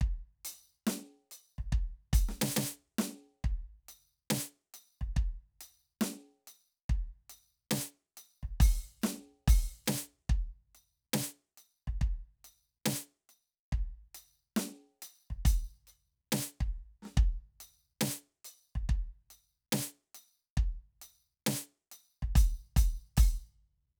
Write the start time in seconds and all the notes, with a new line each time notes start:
0.01 kick
0.45 closed hi-hat
0.87 snare
1.31 closed hi-hat
1.58 kick
1.72 kick, snare, crash, ride
2.13 closed hi-hat, kick
2.29 snare
2.41 snare
2.56 snare
2.99 snare
3.44 kick
3.89 closed hi-hat
4.30 snare
4.74 closed hi-hat
5.01 kick
5.16 kick
5.61 closed hi-hat
6.01 snare
6.47 closed hi-hat
6.89 kick, snare, crash
7.30 closed hi-hat
7.71 snare
8.17 closed hi-hat
8.43 kick
8.60 kick, percussion
9.02 snare, hi-hat pedal
9.48 kick, percussion
9.86 snare, hi-hat pedal
10.29 kick
10.75 closed hi-hat
11.13 snare
11.58 closed hi-hat
11.87 kick
12.01 kick, snare, crash, ride
12.44 closed hi-hat
12.86 snare
13.29 closed hi-hat
13.72 kick
14.15 closed hi-hat
14.56 snare
15.02 closed hi-hat
15.30 kick
15.45 closed hi-hat, kick
15.87 hi-hat pedal
16.32 snare
16.61 kick
17.02 snare
17.05 snare
17.14 kick
17.17 kick
17.60 closed hi-hat
18.01 snare
18.45 closed hi-hat
18.75 kick
18.89 kick, snare, crash, ride
19.30 closed hi-hat
19.72 snare
20.15 closed hi-hat
20.57 kick
21.02 closed hi-hat
21.46 snare
21.92 closed hi-hat
22.22 kick
22.36 closed hi-hat, kick
22.76 closed hi-hat, kick
23.17 kick, percussion